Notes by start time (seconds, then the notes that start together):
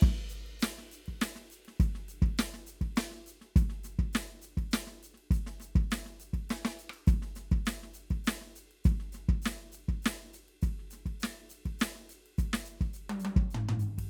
0.01 kick, ride
0.16 snare
0.24 snare
0.29 hi-hat pedal, ride
0.46 ride
0.59 snare, hi-hat pedal, ride
0.78 snare
0.91 hi-hat pedal, ride
1.06 kick, ride
1.21 snare, hi-hat pedal, ride
1.35 snare
1.50 hi-hat pedal, ride
1.65 snare, ride
1.80 kick, hi-hat pedal, ride
1.95 snare
2.08 hi-hat pedal, ride
2.22 kick, ride
2.38 snare, hi-hat pedal, ride
2.53 snare
2.66 hi-hat pedal, ride
2.81 kick, ride
2.96 snare, hi-hat pedal, ride
3.11 snare
3.26 hi-hat pedal, ride
3.41 snare, ride
3.56 kick, hi-hat pedal, ride
3.69 snare
3.83 snare, hi-hat pedal, ride
3.99 kick, ride
4.13 snare, hi-hat pedal, ride
4.42 hi-hat pedal, ride
4.57 kick, ride
4.71 snare, hi-hat pedal, ride
4.87 snare
5.03 hi-hat pedal, ride
5.14 snare, ride
5.31 kick, hi-hat pedal, ride
5.46 snare
5.60 snare, hi-hat pedal, ride
5.75 kick, ride
5.90 snare, hi-hat pedal, ride
6.05 snare
6.20 hi-hat pedal, ride
6.33 kick, ride
6.49 snare, hi-hat pedal, ride
6.65 snare
6.79 hi-hat pedal, ride
6.89 cross-stick
6.94 ride
7.07 kick, hi-hat pedal, ride
7.22 snare
7.35 snare, hi-hat pedal, ride
7.51 kick, ride
7.65 snare, hi-hat pedal, ride
7.83 snare
7.94 hi-hat pedal, ride
8.10 kick, ride
8.24 snare, hi-hat pedal, ride
8.41 snare
8.55 hi-hat pedal, ride
8.71 ride
8.84 kick, hi-hat pedal, ride
8.99 snare
9.12 snare, hi-hat pedal, ride
9.29 kick, ride
9.42 snare, hi-hat pedal, ride
9.72 hi-hat pedal, ride
9.88 kick, ride
10.02 snare, hi-hat pedal, ride
10.33 hi-hat pedal, ride
10.48 ride
10.61 kick, hi-hat pedal, ride
10.79 snare
10.90 snare, hi-hat pedal, ride
11.06 kick, ride
11.20 snare, hi-hat pedal, ride
11.49 hi-hat pedal, ride
11.65 kick, ride
11.79 snare, hi-hat pedal, ride
11.95 snare
12.09 hi-hat pedal, ride
12.26 ride
12.38 kick, hi-hat pedal, ride
12.53 snare
12.65 hi-hat pedal, ride
12.81 kick, ride
12.93 hi-hat pedal, ride
13.09 high tom
13.19 hi-hat pedal
13.25 high tom
13.36 kick
13.50 hi-hat pedal
13.54 floor tom
13.69 floor tom
13.79 hi-hat pedal, ride
13.98 kick, ride